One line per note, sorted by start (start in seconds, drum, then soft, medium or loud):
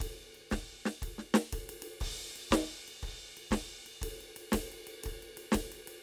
0.01 kick medium
0.01 ride loud
0.35 ride soft
0.51 kick medium
0.51 snare medium
0.51 hi-hat pedal soft
0.51 ride medium
0.86 snare medium
1.03 kick medium
1.03 ride medium
1.19 snare soft
1.35 snare loud
1.52 kick medium
1.52 hi-hat pedal soft
1.52 ride loud
1.70 ride medium
1.83 ride medium
2.01 kick medium
2.01 ride loud
2.37 ride medium
2.49 kick medium
2.49 snare loud
2.49 hi-hat pedal soft
2.53 ride medium
2.89 ride medium
3.04 kick soft
3.04 ride medium
3.38 ride medium
3.49 kick medium
3.49 snare loud
3.49 hi-hat pedal soft
3.49 ride medium
3.87 ride medium
4.02 kick medium
4.02 ride loud
4.22 ride soft
4.37 ride medium
4.52 kick medium
4.52 snare loud
4.52 hi-hat pedal soft
4.52 ride loud
4.73 ride medium
4.88 ride medium
5.05 kick medium
5.05 ride loud
5.23 ride soft
5.38 ride medium
5.52 kick medium
5.52 snare loud
5.52 hi-hat pedal soft
5.52 ride loud
5.73 ride medium
5.88 ride medium